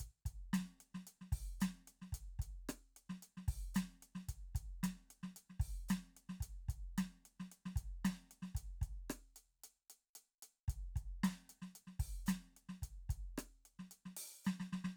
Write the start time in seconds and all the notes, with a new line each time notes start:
0.00 kick, closed hi-hat
0.25 kick, closed hi-hat
0.53 snare, closed hi-hat
0.58 snare
0.80 closed hi-hat
0.94 snare
1.07 closed hi-hat
1.21 snare
1.32 kick, open hi-hat
1.60 snare, closed hi-hat, hi-hat pedal
1.87 closed hi-hat
2.02 snare
2.12 kick, closed hi-hat
2.39 kick, closed hi-hat
2.69 cross-stick, closed hi-hat
2.96 closed hi-hat
3.09 snare
3.22 closed hi-hat
3.37 snare
3.48 kick, open hi-hat
3.74 snare, closed hi-hat, hi-hat pedal
4.02 closed hi-hat
4.15 snare
4.28 kick, closed hi-hat
4.55 kick, closed hi-hat
4.83 snare, closed hi-hat
5.10 closed hi-hat
5.23 snare
5.36 closed hi-hat
5.50 snare
5.60 kick, open hi-hat
5.89 snare, closed hi-hat, hi-hat pedal
6.17 closed hi-hat
6.29 snare
6.40 kick, closed hi-hat
6.68 kick, closed hi-hat
6.98 snare, closed hi-hat
7.25 closed hi-hat
7.40 snare
7.52 closed hi-hat
7.65 snare
7.76 kick, closed hi-hat
8.05 snare, closed hi-hat
8.31 closed hi-hat
8.42 snare
8.55 kick, closed hi-hat
8.81 kick, closed hi-hat
9.10 cross-stick, closed hi-hat
9.36 closed hi-hat
9.64 closed hi-hat
9.90 closed hi-hat
10.15 closed hi-hat
10.42 closed hi-hat
10.68 kick, closed hi-hat
10.96 kick, closed hi-hat
11.23 snare, closed hi-hat
11.49 closed hi-hat
11.62 snare
11.75 closed hi-hat
11.87 snare
11.99 kick, open hi-hat
12.26 snare, closed hi-hat, hi-hat pedal
12.57 closed hi-hat
12.69 snare
12.82 kick, closed hi-hat
13.09 kick, closed hi-hat
13.38 cross-stick, closed hi-hat
13.65 closed hi-hat
13.79 snare
13.91 closed hi-hat
14.05 snare
14.17 open hi-hat
14.44 snare, hi-hat pedal
14.60 snare
14.73 snare
14.84 snare